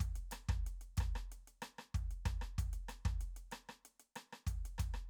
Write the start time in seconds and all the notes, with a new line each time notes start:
0.01 kick, closed hi-hat
0.16 closed hi-hat
0.32 cross-stick, closed hi-hat
0.49 kick, cross-stick
0.67 closed hi-hat
0.82 closed hi-hat
0.98 kick, cross-stick, closed hi-hat
1.16 cross-stick
1.33 closed hi-hat
1.48 closed hi-hat
1.63 cross-stick, closed hi-hat
1.79 cross-stick
1.95 kick, closed hi-hat
2.12 closed hi-hat
2.26 kick, cross-stick, closed hi-hat
2.42 cross-stick
2.59 kick, closed hi-hat
2.74 closed hi-hat
2.89 cross-stick, closed hi-hat
3.06 kick, cross-stick
3.22 closed hi-hat
3.37 closed hi-hat
3.52 cross-stick, closed hi-hat
3.70 cross-stick
3.86 closed hi-hat
4.01 closed hi-hat
4.16 cross-stick, closed hi-hat
4.34 cross-stick
4.47 kick, closed hi-hat
4.66 closed hi-hat
4.79 kick, cross-stick, closed hi-hat
4.95 cross-stick